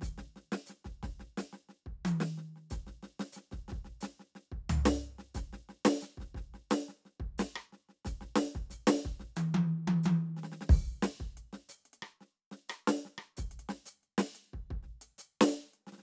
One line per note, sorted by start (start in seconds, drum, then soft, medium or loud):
0.01 kick medium
0.01 snare soft
0.01 hi-hat pedal medium
0.18 snare soft
0.36 snare soft
0.52 snare medium
0.66 snare soft
0.66 hi-hat pedal medium
0.84 kick soft
0.84 snare soft
1.03 kick medium
1.03 snare soft
1.20 snare soft
1.38 snare medium
1.38 hi-hat pedal medium
1.53 snare soft
1.69 snare soft
1.86 kick soft
2.05 hi-hat pedal medium
2.05 high tom loud
2.20 snare medium
2.38 snare soft
2.56 snare soft
2.70 kick medium
2.70 snare soft
2.70 hi-hat pedal medium
2.87 snare soft
3.03 snare soft
3.19 snare medium
3.33 snare soft
3.33 hi-hat pedal medium
3.51 kick soft
3.51 snare soft
3.68 kick medium
3.68 snare soft
3.85 snare soft
4.01 snare medium
4.01 hi-hat pedal medium
4.19 snare soft
4.35 snare soft
4.52 kick medium
4.69 floor tom loud
4.69 hi-hat pedal medium
4.85 snare loud
5.18 snare soft
5.34 kick medium
5.34 snare soft
5.34 hi-hat pedal medium
5.53 snare soft
5.69 snare soft
5.85 snare loud
6.01 snare soft
6.01 hi-hat pedal medium
6.17 kick soft
6.17 snare soft
6.34 kick soft
6.34 snare soft
6.54 snare soft
6.70 snare medium
6.70 hi-hat pedal medium
6.88 snare soft
7.05 snare soft
7.20 kick medium
7.38 snare loud
7.38 hi-hat pedal medium
7.56 cross-stick medium
7.73 snare soft
7.89 snare soft
8.05 kick medium
8.05 snare soft
8.05 hi-hat pedal medium
8.21 snare soft
8.36 snare loud
8.55 kick medium
8.55 snare soft
8.70 snare soft
8.70 hi-hat pedal medium
8.87 snare loud
9.05 kick medium
9.05 snare soft
9.20 snare soft
9.36 hi-hat pedal medium
9.36 high tom loud
9.54 high tom loud
9.88 high tom loud
10.03 hi-hat pedal medium
10.03 high tom loud
10.37 snare soft
10.43 snare soft
10.52 snare soft
10.61 snare medium
10.69 open hi-hat medium
10.69 kick loud
11.03 snare loud
11.03 hi-hat pedal soft
11.20 kick medium
11.37 closed hi-hat soft
11.53 snare soft
11.69 hi-hat pedal medium
11.85 closed hi-hat soft
11.93 closed hi-hat soft
12.02 cross-stick medium
12.21 snare soft
12.51 snare soft
12.69 cross-stick medium
12.69 hi-hat pedal medium
12.88 snare loud
13.05 snare soft
13.18 cross-stick medium
13.37 kick medium
13.37 hi-hat pedal medium
13.51 closed hi-hat soft
13.59 closed hi-hat soft
13.69 snare medium
13.86 hi-hat pedal medium
14.03 closed hi-hat soft
14.18 snare loud
14.35 closed hi-hat medium
14.53 kick soft
14.70 kick medium
14.83 snare soft
15.01 closed hi-hat medium
15.18 hi-hat pedal medium
15.41 snare loud
15.73 closed hi-hat soft
15.87 snare soft
15.92 snare soft
15.98 snare soft